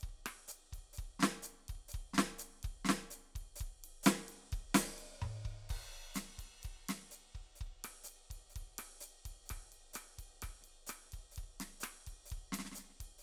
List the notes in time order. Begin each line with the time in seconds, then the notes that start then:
0.01 kick, ride
0.08 kick
0.26 cross-stick, ride
0.48 hi-hat pedal, ride
0.72 kick, ride
0.78 kick
0.93 hi-hat pedal
0.97 kick, ride
1.04 kick
1.19 snare
1.23 snare
1.42 hi-hat pedal, ride
1.68 kick, ride
1.75 kick
1.88 hi-hat pedal, ride
1.94 kick
2.00 kick
2.13 snare
2.18 snare
2.38 snare, hi-hat pedal, ride
2.42 snare
2.63 kick, ride
2.85 snare
2.89 snare
3.10 hi-hat pedal, ride
3.25 snare
3.35 kick, ride
3.41 kick
3.56 hi-hat pedal
3.60 kick, ride
3.66 kick
3.84 ride
4.03 snare, hi-hat pedal, ride
4.28 ride
4.35 snare
4.42 snare
4.52 kick, ride
4.59 kick
4.74 snare, hi-hat pedal, ride
4.84 snare
4.98 ride
5.22 kick, mid tom
5.45 kick
5.50 kick
5.58 snare
5.69 kick, crash
5.77 kick
6.14 snare, hi-hat pedal, ride
6.38 kick, ride
6.44 snare
6.62 kick, hi-hat pedal, ride
6.89 snare, ride
7.11 hi-hat pedal
7.35 kick, ride
7.40 kick
7.55 hi-hat pedal
7.61 kick
7.66 kick
7.84 cross-stick, ride
8.04 hi-hat pedal
8.08 ride
8.30 kick, ride
8.35 kick
8.50 hi-hat pedal
8.56 kick, ride
8.61 kick
8.78 cross-stick, ride
9.00 hi-hat pedal, ride
9.25 kick, ride
9.30 kick
9.46 hi-hat pedal, ride
9.50 kick, cross-stick
9.56 kick
9.72 ride
9.93 cross-stick, hi-hat pedal, ride
10.18 kick, ride
10.42 kick, cross-stick, ride
10.49 kick
10.61 snare, ride
10.87 cross-stick, hi-hat pedal, ride
11.05 snare
11.12 kick, ride
11.18 kick
11.31 hi-hat pedal
11.36 kick, ride
11.43 kick
11.60 snare, ride
11.80 cross-stick, hi-hat pedal, ride
12.07 kick, ride
12.12 kick
12.25 hi-hat pedal
12.30 kick, ride
12.37 kick
12.52 snare, ride
12.59 snare
12.65 snare
12.71 snare, hi-hat pedal
12.78 snare, ride
12.83 snare
12.89 snare
12.95 snare
13.00 kick, snare, ride
13.05 kick, snare
13.18 hi-hat pedal